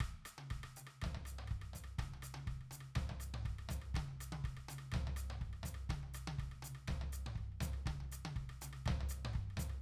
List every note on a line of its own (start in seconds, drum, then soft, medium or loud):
0.01 kick soft
0.01 cross-stick medium
0.25 cross-stick soft
0.25 hi-hat pedal medium
0.38 high tom medium
0.50 kick soft
0.50 cross-stick soft
0.63 cross-stick soft
0.76 hi-hat pedal medium
0.76 high tom soft
0.87 cross-stick soft
1.02 kick soft
1.02 cross-stick medium
1.02 floor tom medium
1.15 floor tom medium
1.25 cross-stick soft
1.25 hi-hat pedal medium
1.38 mid tom medium
1.47 kick soft
1.47 cross-stick soft
1.61 cross-stick soft
1.73 floor tom soft
1.73 hi-hat pedal medium
1.84 cross-stick soft
1.98 kick soft
1.98 cross-stick medium
1.98 high tom medium
2.14 high tom soft
2.17 high tom soft
2.22 cross-stick soft
2.22 hi-hat pedal medium
2.34 high tom medium
2.47 kick soft
2.47 cross-stick soft
2.61 cross-stick soft
2.71 hi-hat pedal medium
2.71 high tom medium
2.80 cross-stick soft
2.95 kick soft
2.95 cross-stick medium
2.95 floor tom medium
3.09 floor tom medium
3.20 cross-stick soft
3.20 hi-hat pedal medium
3.34 mid tom medium
3.45 kick soft
3.45 cross-stick soft
3.59 cross-stick soft
3.69 floor tom medium
3.69 hi-hat pedal medium
3.82 cross-stick soft
3.94 kick soft
3.94 cross-stick soft
3.94 high tom medium
4.08 high tom soft
4.11 high tom soft
4.16 high tom soft
4.20 cross-stick soft
4.20 hi-hat pedal medium
4.32 high tom medium
4.44 kick soft
4.44 cross-stick soft
4.57 cross-stick soft
4.68 hi-hat pedal medium
4.68 high tom medium
4.78 cross-stick soft
4.92 kick soft
4.92 cross-stick soft
4.92 floor tom medium
5.07 floor tom medium
5.16 cross-stick soft
5.16 hi-hat pedal medium
5.30 mid tom medium
5.41 kick soft
5.41 cross-stick soft
5.53 cross-stick soft
5.63 floor tom medium
5.63 hi-hat pedal medium
5.74 cross-stick soft
5.89 kick soft
5.89 cross-stick soft
5.89 high tom medium
6.03 high tom soft
6.06 high tom soft
6.14 cross-stick soft
6.14 hi-hat pedal medium
6.27 high tom medium
6.38 kick soft
6.38 cross-stick soft
6.51 cross-stick soft
6.62 hi-hat pedal medium
6.62 high tom medium
6.75 cross-stick soft
6.88 kick soft
6.88 cross-stick soft
6.88 floor tom medium
7.01 floor tom medium
7.12 cross-stick soft
7.12 hi-hat pedal medium
7.26 mid tom medium
7.35 kick soft
7.35 cross-stick soft
7.52 cross-stick soft
7.60 floor tom medium
7.60 hi-hat pedal medium
7.73 cross-stick soft
7.86 kick soft
7.86 cross-stick soft
7.86 high tom medium
8.00 high tom soft
8.04 high tom soft
8.12 cross-stick soft
8.12 hi-hat pedal medium
8.25 high tom medium
8.36 kick soft
8.36 cross-stick soft
8.49 cross-stick soft
8.61 hi-hat pedal medium
8.61 high tom medium
8.73 cross-stick soft
8.86 kick soft
8.86 cross-stick soft
8.86 floor tom loud
9.01 floor tom medium
9.09 cross-stick soft
9.09 hi-hat pedal medium
9.25 mid tom loud
9.33 kick soft
9.33 cross-stick soft
9.50 cross-stick soft
9.57 floor tom medium
9.57 hi-hat pedal medium
9.70 cross-stick soft